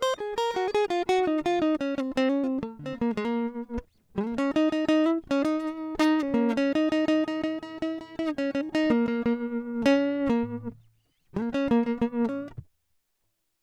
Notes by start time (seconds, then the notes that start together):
0.04 C5
0.21 G#4
0.39 A#4
0.58 F#4
0.76 G#4
0.92 F4
1.10 F#4
1.29 D#4
1.47 F4
1.63 D#4
1.82 C#4
2.00 C4
2.18 C4
2.31 C#4
2.45 C4
2.81 D3
2.87 C4
3.03 A#3
3.19 G#3
3.27 A#3
4.19 A#3
4.39 C#4
4.57 D#4
4.74 D#4
4.90 D#4
5.07 E4
5.32 C#4
5.47 D#4
6.00 D#4
6.21 C#4
6.36 A#3
6.59 C#4
6.77 D#4
6.94 D#4
7.10 D#4
7.29 D#4
7.46 D#4
7.64 D#4
7.83 E4
8.00 E4
8.21 D#4
8.39 C#4
8.56 C#4
8.76 D#4
8.92 A#3
9.07 A#3
9.27 A#3
9.87 C#4
10.31 A#3
11.38 A#3
11.56 C#4
11.73 A#3
11.88 A#3
12.03 B3
12.31 C#4